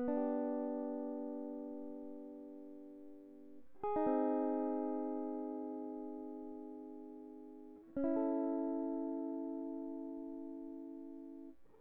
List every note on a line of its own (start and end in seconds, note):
0.00 3.67 B3
0.08 3.67 D4
0.18 2.78 G4
3.84 7.88 G#4
3.97 8.03 D#4
4.08 7.83 C4
7.97 11.55 C#4
8.05 11.57 E4
8.16 11.55 A4